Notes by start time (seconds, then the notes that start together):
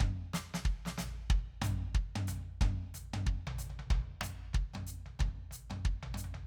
0.01 kick, floor tom, high tom
0.34 snare, floor tom, hi-hat pedal
0.55 snare, floor tom
0.66 kick
0.86 snare, floor tom
0.99 snare, floor tom, hi-hat pedal
1.31 kick, floor tom
1.62 floor tom, hi-hat pedal, high tom
1.96 kick, floor tom
2.16 high tom
2.28 floor tom, hi-hat pedal
2.62 kick, floor tom, high tom
2.95 floor tom, hi-hat pedal
3.14 floor tom, high tom
3.27 kick
3.48 floor tom
3.59 floor tom, hi-hat pedal
3.71 floor tom
3.80 floor tom
3.91 kick, floor tom
4.22 floor tom, hi-hat pedal, high tom
4.54 kick, floor tom
4.74 floor tom, high tom
4.88 hi-hat pedal
5.07 floor tom
5.20 kick, floor tom, high tom
5.52 floor tom, hi-hat pedal
5.71 floor tom, high tom
5.86 kick
6.04 floor tom
6.15 hi-hat pedal, high tom
6.25 floor tom